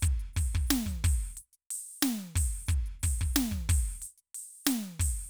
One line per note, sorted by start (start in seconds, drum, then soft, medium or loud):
0.01 closed hi-hat loud
0.01 kick medium
0.01 hi-hat pedal medium
0.20 closed hi-hat soft
0.34 kick medium
0.34 hi-hat pedal soft
0.38 open hi-hat medium
0.55 kick medium
0.67 closed hi-hat medium
0.67 snare loud
0.67 hi-hat pedal medium
0.86 closed hi-hat medium
0.86 kick soft
1.04 open hi-hat loud
1.04 kick medium
1.37 open hi-hat medium
1.37 hi-hat pedal medium
1.53 closed hi-hat soft
1.71 open hi-hat loud
2.02 closed hi-hat medium
2.02 snare loud
2.02 hi-hat pedal medium
2.20 closed hi-hat soft
2.36 open hi-hat loud
2.36 kick medium
2.67 closed hi-hat medium
2.67 kick medium
2.67 hi-hat pedal medium
2.86 closed hi-hat soft
3.00 open hi-hat loud
3.00 kick medium
3.00 hi-hat pedal soft
3.21 kick medium
3.34 closed hi-hat medium
3.34 snare loud
3.34 hi-hat pedal medium
3.52 kick soft
3.52 closed hi-hat soft
3.69 open hi-hat loud
3.69 kick medium
4.02 open hi-hat medium
4.02 hi-hat pedal medium
4.18 closed hi-hat soft
4.35 open hi-hat medium
4.65 closed hi-hat loud
4.65 snare loud
4.65 hi-hat pedal medium
4.84 closed hi-hat soft
5.00 open hi-hat loud
5.00 kick medium